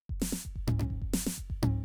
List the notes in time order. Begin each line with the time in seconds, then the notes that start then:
0.09 kick
0.20 snare, ride
0.32 snare, ride
0.45 kick
0.56 kick
0.68 floor tom, high tom
0.79 floor tom, high tom
0.90 kick
1.02 kick
1.13 snare, ride
1.25 snare, ride
1.38 kick
1.50 kick
1.63 floor tom, high tom